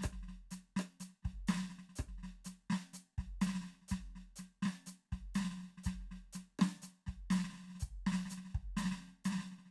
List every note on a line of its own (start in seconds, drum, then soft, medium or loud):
0.01 cross-stick medium
0.01 snare soft
0.01 hi-hat pedal medium
0.05 kick soft
0.10 kick soft
0.10 snare soft
0.23 snare soft
0.28 snare soft
0.51 snare soft
0.51 hi-hat pedal medium
0.77 cross-stick medium
0.77 snare medium
1.00 snare soft
1.00 hi-hat pedal medium
1.09 snare soft
1.15 snare soft
1.23 snare soft
1.24 kick soft
1.24 snare soft
1.48 snare loud
1.48 hi-hat pedal medium
1.51 snare medium
1.54 snare medium
1.57 snare medium
1.60 snare soft
1.63 snare medium
1.70 snare soft
1.79 snare soft
1.89 snare soft
1.96 kick soft
1.96 cross-stick medium
1.96 hi-hat pedal medium
2.08 snare soft
2.18 snare soft
2.23 snare soft
2.31 snare soft
2.45 snare soft
2.45 hi-hat pedal medium
2.70 snare medium
2.72 snare medium
2.93 snare soft
2.93 hi-hat pedal medium
3.07 snare soft
3.18 kick soft
3.18 snare soft
3.41 snare medium
3.41 hi-hat pedal medium
3.47 snare medium
3.49 snare medium
3.53 snare soft
3.55 snare medium
3.61 snare soft
3.67 snare soft
3.74 snare soft
3.82 snare soft
3.88 snare soft
3.88 hi-hat pedal medium
3.91 kick soft
3.91 snare medium
4.01 snare soft
4.10 snare soft
4.15 snare soft
4.36 snare soft
4.36 hi-hat pedal medium
4.63 snare medium
4.66 snare medium
4.86 snare soft
4.86 hi-hat pedal medium
5.04 snare soft
5.12 kick soft
5.12 snare soft
5.35 snare medium
5.35 hi-hat pedal medium
5.38 snare medium
5.41 snare medium
5.45 snare medium
5.48 snare soft
5.51 snare medium
5.57 snare soft
5.59 snare soft
5.63 snare soft
5.68 snare soft
5.78 snare soft
5.84 kick soft
5.84 snare soft
5.84 snare medium
5.84 hi-hat pedal medium
5.94 snare soft
6.01 snare soft
6.07 snare soft
6.11 snare soft
6.22 snare soft
6.25 snare soft
6.33 snare soft
6.33 hi-hat pedal medium
6.59 cross-stick medium
6.59 snare medium
6.82 snare soft
6.82 hi-hat pedal medium
6.93 snare soft
6.98 snare soft
7.07 kick soft
7.07 snare soft
7.31 snare medium
7.31 hi-hat pedal medium
7.32 snare medium
7.35 snare medium
7.39 snare medium
7.44 snare medium
7.50 snare soft
7.53 snare soft
7.57 snare soft
7.60 snare soft
7.64 snare soft
7.67 snare soft
7.75 snare soft
7.80 kick soft
7.80 snare soft
7.80 hi-hat pedal medium
8.07 snare medium
8.12 snare medium
8.14 snare medium
8.19 snare soft
8.26 snare soft
8.30 snare soft
8.30 hi-hat pedal medium
8.38 snare soft
8.45 snare soft
8.50 snare soft
8.55 kick soft
8.55 snare soft
8.77 snare medium
8.77 hi-hat pedal medium
8.79 snare medium
8.82 snare medium
8.85 snare medium
8.91 snare medium
8.97 snare soft
9.01 snare soft
9.08 snare soft
9.25 snare medium
9.25 hi-hat pedal medium
9.30 snare medium
9.32 snare medium
9.35 snare medium
9.38 snare medium
9.41 snare medium
9.45 snare soft
9.52 snare soft
9.58 snare soft
9.66 snare soft